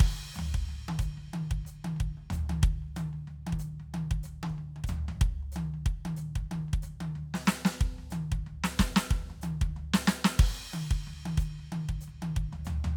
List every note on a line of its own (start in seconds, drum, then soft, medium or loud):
0.01 kick loud
0.01 crash medium
0.34 floor tom medium
0.34 hi-hat pedal medium
0.39 floor tom loud
0.55 kick medium
0.70 floor tom soft
0.89 high tom loud
1.00 kick medium
1.00 floor tom soft
1.00 hi-hat pedal medium
1.18 floor tom soft
1.34 high tom loud
1.51 kick medium
1.51 floor tom soft
1.66 floor tom soft
1.66 hi-hat pedal medium
1.85 high tom loud
1.97 kick medium
1.97 floor tom soft
2.18 high tom soft
2.31 kick soft
2.31 floor tom loud
2.31 hi-hat pedal medium
2.50 high tom loud
2.63 kick loud
2.63 floor tom soft
2.83 floor tom soft
2.97 hi-hat pedal medium
2.97 high tom loud
3.14 floor tom soft
3.28 floor tom medium
3.47 high tom loud
3.53 kick medium
3.60 floor tom soft
3.60 hi-hat pedal medium
3.80 floor tom soft
3.94 high tom loud
4.11 kick medium
4.11 floor tom soft
4.24 floor tom soft
4.24 hi-hat pedal medium
4.44 high tom loud
4.50 kick soft
4.59 floor tom soft
4.77 high tom medium
4.84 kick medium
4.84 hi-hat pedal medium
4.90 floor tom loud
5.09 floor tom loud
5.22 kick loud
5.22 floor tom medium
5.41 kick soft
5.41 floor tom soft
5.52 hi-hat pedal medium
5.56 high tom loud
5.74 floor tom soft
5.86 kick medium
5.86 floor tom soft
6.06 high tom loud
6.17 floor tom soft
6.17 hi-hat pedal medium
6.36 kick medium
6.36 floor tom medium
6.52 high tom loud
6.69 floor tom soft
6.74 kick medium
6.83 floor tom medium
6.83 hi-hat pedal medium
7.01 high tom loud
7.16 floor tom medium
7.35 snare medium
7.46 kick soft
7.46 snare loud
7.46 hi-hat pedal medium
7.66 snare loud
7.81 kick medium
7.81 floor tom medium
7.99 floor tom soft
8.11 hi-hat pedal medium
8.11 high tom loud
8.32 kick medium
8.32 floor tom medium
8.47 floor tom medium
8.64 snare loud
8.78 kick medium
8.78 snare loud
8.78 hi-hat pedal medium
8.97 snare loud
9.11 kick medium
9.11 floor tom medium
9.30 floor tom medium
9.42 hi-hat pedal medium
9.42 high tom loud
9.62 kick medium
9.62 floor tom medium
9.77 floor tom medium
9.94 snare loud
10.06 snare loud
10.06 hi-hat pedal medium
10.25 snare loud
10.40 kick loud
10.40 crash loud
10.73 hi-hat pedal medium
10.73 high tom loud
10.91 kick medium
11.08 floor tom medium
11.26 high tom loud
11.38 kick medium
11.38 floor tom soft
11.38 hi-hat pedal medium
11.60 floor tom soft
11.73 high tom loud
11.89 kick medium
11.89 floor tom soft
12.01 hi-hat pedal medium
12.08 floor tom soft
12.23 high tom loud
12.36 kick medium
12.36 floor tom soft
12.53 floor tom medium
12.65 floor tom loud
12.65 hi-hat pedal medium
12.85 floor tom loud